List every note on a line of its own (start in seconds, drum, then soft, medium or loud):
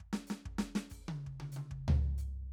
0.00 kick soft
0.13 snare medium
0.27 snare medium
0.27 hi-hat pedal soft
0.45 kick soft
0.58 snare medium
0.75 snare medium
0.90 kick soft
0.90 hi-hat pedal soft
1.08 high tom medium
1.26 kick soft
1.40 high tom medium
1.52 hi-hat pedal soft
1.56 high tom medium
1.71 kick soft
1.88 floor tom loud
2.18 hi-hat pedal soft